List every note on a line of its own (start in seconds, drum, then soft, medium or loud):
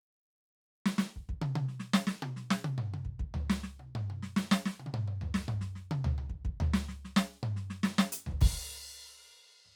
0.86 snare loud
0.98 snare loud
0.98 hi-hat pedal soft
1.16 kick soft
1.29 kick medium
1.41 high tom loud
1.55 high tom loud
1.68 snare soft
1.79 snare medium
1.93 snare loud
2.07 snare loud
2.22 high tom loud
2.36 snare soft
2.50 snare loud
2.64 high tom loud
2.78 mid tom loud
2.94 high tom medium
3.05 kick soft
3.19 kick medium
3.34 floor tom loud
3.50 snare loud
3.63 snare medium
3.79 high tom soft
3.95 mid tom loud
4.10 high tom medium
4.23 snare medium
4.36 snare loud
4.51 snare loud
4.65 snare loud
4.79 high tom medium
4.86 high tom medium
4.94 mid tom loud
5.07 mid tom medium
5.21 floor tom medium
5.34 snare loud
5.48 mid tom loud
5.61 snare medium
5.75 snare soft
5.91 high tom loud
6.04 floor tom loud
6.18 high tom soft
6.29 kick medium
6.45 kick medium
6.60 floor tom loud
6.74 snare loud
6.88 snare medium
7.05 snare soft
7.16 snare loud
7.43 mid tom loud
7.56 snare soft
7.70 snare medium
7.83 snare loud
7.98 snare loud
8.12 closed hi-hat loud
8.26 floor tom loud
8.31 kick soft
8.41 kick loud
8.41 crash loud
9.65 floor tom soft